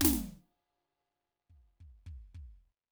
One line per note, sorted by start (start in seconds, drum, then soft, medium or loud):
0.01 kick soft
0.01 snare loud
0.05 snare loud
0.13 snare medium
1.50 kick soft
1.80 kick soft
2.06 kick soft
2.35 kick soft